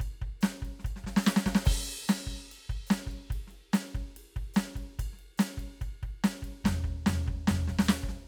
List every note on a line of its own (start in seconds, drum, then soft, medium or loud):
0.01 kick medium
0.01 ride bell medium
0.22 kick medium
0.22 ride soft
0.42 snare loud
0.42 hi-hat pedal medium
0.42 ride bell soft
0.63 kick soft
0.63 ride soft
0.80 snare soft
0.85 kick medium
0.85 ride bell soft
0.97 snare soft
1.05 kick soft
1.05 snare medium
1.17 snare loud
1.23 snare loud
1.23 hi-hat pedal medium
1.37 snare loud
1.46 kick soft
1.46 snare loud
1.56 snare loud
1.66 kick loud
1.66 crash loud
2.09 snare loud
2.09 hi-hat pedal medium
2.09 ride bell medium
2.27 kick soft
2.52 ride bell medium
2.70 kick medium
2.70 ride soft
2.87 snare loud
2.87 hi-hat pedal medium
2.93 ride bell soft
3.07 kick soft
3.12 ride soft
3.31 kick medium
3.31 ride medium
3.48 snare soft
3.48 ride soft
3.74 snare loud
3.74 hi-hat pedal medium
3.74 ride bell medium
3.95 kick medium
3.95 ride soft
4.17 ride medium
4.37 kick medium
4.37 ride soft
4.54 snare loud
4.54 hi-hat pedal medium
4.54 ride bell soft
4.76 kick soft
4.76 ride soft
5.00 kick medium
5.00 ride bell medium
5.13 snare soft
5.20 ride soft
5.38 snare loud
5.38 hi-hat pedal medium
5.38 ride bell medium
5.58 kick soft
5.58 ride soft
5.82 kick medium
5.82 ride bell soft
6.04 kick medium
6.04 ride soft
6.25 snare loud
6.25 ride bell medium
6.43 kick soft
6.43 ride soft
6.65 kick soft
6.65 snare loud
6.65 floor tom loud
6.85 kick medium
7.07 snare loud
7.07 floor tom loud
7.27 kick medium
7.27 floor tom soft
7.48 snare loud
7.48 floor tom loud
7.53 kick soft
7.68 kick soft
7.68 snare medium
7.79 snare loud
7.84 hi-hat pedal medium
7.89 snare loud
8.04 kick medium
8.09 snare soft